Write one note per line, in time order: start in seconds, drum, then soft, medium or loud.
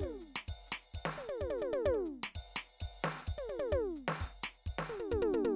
0.01 kick soft
0.01 high tom soft
0.01 high tom medium
0.21 hi-hat pedal medium
0.36 snare medium
0.48 kick soft
0.48 ride medium
0.67 hi-hat pedal medium
0.72 snare medium
0.94 kick soft
0.94 ride medium
1.05 snare medium
1.13 hi-hat pedal medium
1.17 high tom medium
1.29 high tom medium
1.41 kick soft
1.41 high tom medium
1.50 high tom medium
1.58 hi-hat pedal medium
1.58 high tom medium
1.73 high tom loud
1.85 kick soft
1.85 high tom loud
1.94 high tom soft
2.05 hi-hat pedal medium
2.24 snare medium
2.35 kick soft
2.35 ride bell medium
2.55 snare medium
2.55 hi-hat pedal medium
2.81 kick soft
2.81 ride bell medium
3.02 snare medium
3.02 hi-hat pedal medium
3.27 kick soft
3.27 ride medium
3.38 high tom medium
3.49 hi-hat pedal medium
3.49 high tom medium
3.59 high tom medium
3.72 kick soft
3.72 high tom loud
3.96 hi-hat pedal medium
4.08 snare medium
4.20 kick soft
4.20 ride medium
4.42 snare medium
4.42 hi-hat pedal medium
4.66 kick soft
4.66 ride bell medium
4.79 snare medium
4.88 hi-hat pedal medium
4.88 mid tom medium
4.99 mid tom medium
5.11 kick soft
5.11 mid tom loud
5.22 mid tom loud
5.33 hi-hat pedal medium
5.33 mid tom loud
5.44 mid tom loud